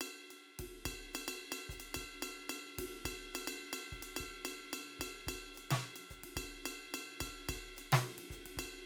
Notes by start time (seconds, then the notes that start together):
0.02 hi-hat pedal, ride bell
0.30 ride bell
0.58 kick, hi-hat pedal, ride
0.85 kick, ride bell
1.13 hi-hat pedal, ride bell
1.28 ride bell
1.52 ride bell
1.69 kick, hi-hat pedal
1.80 ride bell
1.94 kick, ride bell
2.22 hi-hat pedal, ride bell
2.49 ride bell
2.78 kick, hi-hat pedal, ride
3.05 kick, ride bell
3.10 kick
3.33 hi-hat pedal, ride bell
3.47 ride bell
3.73 ride bell
3.92 kick, hi-hat pedal
4.02 ride bell
4.16 kick, ride bell
4.45 hi-hat pedal, ride bell
4.73 ride bell
4.99 kick, hi-hat pedal, ride bell
5.27 kick, ride bell
5.54 hi-hat pedal, ride bell
5.70 snare, ride bell
5.95 ride bell
6.10 kick, hi-hat pedal
6.23 ride
6.36 kick, ride bell
6.65 hi-hat pedal, ride bell
6.94 ride bell
7.20 kick, hi-hat pedal, ride bell
7.48 kick, ride bell
7.76 hi-hat pedal, ride bell
7.92 kick, snare, closed hi-hat, ride
8.18 ride
8.30 kick, hi-hat pedal
8.45 ride
8.57 kick, ride bell